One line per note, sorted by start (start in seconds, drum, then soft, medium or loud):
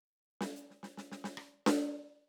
0.41 snare medium
0.56 hi-hat pedal soft
0.70 snare soft
0.83 snare soft
0.97 snare soft
1.11 snare soft
1.24 snare medium
1.37 cross-stick medium
1.66 snare loud